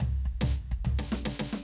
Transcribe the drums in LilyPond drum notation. \new DrumStaff \drummode { \time 4/4 \tempo 4 = 144 \tuplet 3/2 { tomfh8 r8 bd8 <sn tomfh>8 r8 bd8 tomfh8 sn8 sn8 sn8 sn8 sn8 } | }